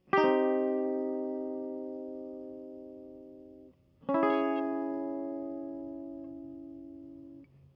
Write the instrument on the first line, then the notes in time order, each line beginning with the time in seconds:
electric guitar
0.14 G4
0.18 D#4
0.25 C4
4.10 C#4
4.15 E4
4.24 G#4